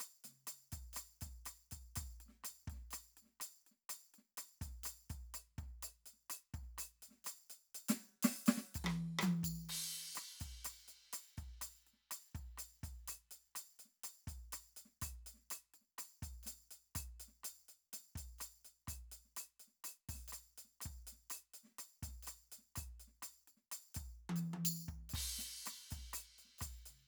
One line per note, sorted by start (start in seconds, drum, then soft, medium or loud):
0.01 cross-stick soft
0.01 percussion medium
0.25 snare soft
0.25 mid tom soft
0.25 percussion soft
0.30 snare soft
0.48 cross-stick soft
0.48 percussion medium
0.73 kick soft
0.73 percussion medium
0.94 snare soft
0.94 percussion medium
0.97 cross-stick soft
0.97 percussion medium
1.22 kick soft
1.22 percussion medium
1.27 snare soft
1.46 cross-stick soft
1.46 percussion soft
1.46 percussion medium
1.72 kick soft
1.72 percussion medium
1.97 kick soft
1.97 cross-stick soft
1.97 percussion medium
2.04 kick soft
2.21 percussion soft
2.27 snare soft
2.29 snare soft
2.44 cross-stick soft
2.44 snare soft
2.44 percussion medium
2.68 kick soft
2.68 percussion soft
2.73 snare soft
2.76 snare soft
2.92 cross-stick soft
2.92 snare soft
2.92 percussion soft
2.94 percussion medium
3.18 percussion soft
3.23 snare soft
3.26 snare soft
3.41 cross-stick soft
3.41 percussion medium
3.68 percussion soft
3.72 snare soft
3.90 cross-stick soft
3.90 percussion medium
4.15 percussion soft
4.19 snare soft
4.38 cross-stick soft
4.38 percussion medium
4.62 kick soft
4.62 percussion soft
4.68 snare soft
4.85 cross-stick soft
4.85 percussion medium
4.87 percussion medium
5.11 kick soft
5.11 percussion soft
5.35 cross-stick soft
5.35 percussion medium
5.35 percussion soft
5.59 kick soft
5.59 snare soft
5.59 percussion soft
5.64 snare soft
5.84 cross-stick soft
5.84 percussion medium
5.84 percussion soft
6.07 percussion soft
6.14 snare soft
6.31 cross-stick soft
6.31 percussion soft
6.31 percussion medium
6.55 kick soft
6.55 percussion soft
6.63 snare soft
6.79 cross-stick soft
6.79 snare soft
6.79 percussion medium
6.79 percussion soft
7.03 percussion soft
7.09 snare soft
7.12 snare soft
7.25 percussion soft
7.27 cross-stick soft
7.27 percussion medium
7.51 percussion soft
7.76 percussion medium
7.90 snare medium
7.90 percussion loud
8.24 snare medium
8.24 percussion loud
8.47 snare loud
8.47 percussion medium
8.58 snare soft
8.75 kick soft
8.75 crash soft
8.75 percussion medium
8.85 high tom loud
8.87 high tom medium
8.91 high tom medium
9.20 high tom loud
9.20 percussion medium
9.24 high tom loud
9.44 kick soft
9.44 percussion medium
9.70 crash loud
10.16 cross-stick medium
10.16 percussion medium
10.41 kick soft
10.41 percussion soft
10.66 cross-stick soft
10.66 percussion medium
10.89 percussion soft
11.14 cross-stick soft
11.14 percussion medium
11.38 kick soft
11.38 percussion soft
11.62 cross-stick soft
11.62 snare soft
11.62 percussion medium
11.88 percussion soft
11.94 snare soft
12.12 cross-stick soft
12.12 percussion medium
12.36 kick soft
12.36 percussion soft
12.59 cross-stick soft
12.59 percussion soft
12.59 percussion medium
12.84 kick soft
12.84 percussion soft
13.09 cross-stick soft
13.09 percussion medium
13.32 percussion soft
13.56 cross-stick soft
13.56 snare soft
13.56 percussion medium
13.80 percussion soft
13.86 snare soft
14.05 cross-stick soft
14.05 percussion medium
14.28 kick soft
14.28 percussion soft
14.53 cross-stick soft
14.53 percussion medium
14.77 percussion soft
14.86 snare soft
15.03 kick soft
15.03 cross-stick soft
15.03 percussion medium
15.27 percussion soft
15.35 snare soft
15.51 cross-stick soft
15.51 percussion medium
15.75 percussion soft
15.82 snare soft
15.99 cross-stick soft
15.99 percussion medium
16.23 kick soft
16.23 percussion medium
16.44 snare soft
16.44 percussion soft
16.48 percussion medium
16.72 percussion soft
16.96 kick soft
16.96 cross-stick soft
16.96 snare soft
16.96 percussion soft
16.96 percussion medium
17.21 percussion soft
17.29 snare soft
17.45 cross-stick soft
17.45 percussion medium
17.69 percussion soft
17.94 snare soft
17.94 percussion medium
18.16 kick soft
18.16 percussion medium
18.40 cross-stick soft
18.40 percussion soft
18.42 percussion medium
18.66 percussion soft
18.88 kick soft
18.88 cross-stick soft
18.88 percussion soft
18.88 percussion medium
19.13 percussion soft
19.26 snare soft
19.38 cross-stick soft
19.38 percussion medium
19.61 percussion soft
19.68 snare soft
19.85 cross-stick soft
19.85 percussion medium
20.10 kick soft
20.10 percussion medium
20.16 snare soft
20.29 percussion medium
20.33 cross-stick soft
20.33 percussion medium
20.59 percussion soft
20.65 snare soft
20.82 cross-stick soft
20.82 percussion medium
20.87 kick soft
21.08 percussion soft
21.13 snare soft
21.31 cross-stick soft
21.31 percussion medium
21.55 percussion soft
21.64 snare soft
21.80 cross-stick soft
21.80 percussion medium
22.04 kick soft
22.04 percussion medium
22.09 snare soft
22.24 percussion soft
22.28 cross-stick soft
22.28 percussion medium
22.53 percussion soft
22.59 snare soft
22.77 kick soft
22.77 cross-stick soft
22.77 percussion medium
22.77 percussion soft
23.01 percussion soft
23.08 snare soft
23.23 cross-stick soft
23.23 percussion medium
23.49 percussion soft
23.58 snare soft
23.72 cross-stick soft
23.72 percussion medium
23.96 kick soft
23.96 percussion medium
24.30 high tom medium
24.37 percussion medium
24.54 high tom medium
24.66 percussion medium
24.66 percussion loud
24.89 kick soft
25.10 percussion medium
25.15 kick soft
25.15 crash medium
25.21 kick soft
25.24 kick soft
25.39 snare soft
25.39 percussion medium
25.67 cross-stick soft
25.67 snare soft
25.67 percussion medium
25.92 kick soft
25.92 percussion soft
25.99 snare soft
26.14 cross-stick soft
26.14 percussion medium
26.39 percussion soft
26.46 snare soft
26.47 snare soft
26.59 kick soft
26.59 cross-stick soft
26.59 percussion soft
26.63 percussion medium
26.87 percussion soft
26.91 mid tom soft